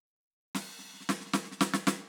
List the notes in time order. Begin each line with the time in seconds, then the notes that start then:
0.55 snare, crash
0.79 snare
0.84 snare
0.89 snare
0.94 snare
1.00 snare
1.09 snare
1.20 snare
1.26 snare
1.33 snare
1.44 snare
1.51 snare
1.58 snare
1.61 snare
1.74 snare
1.87 snare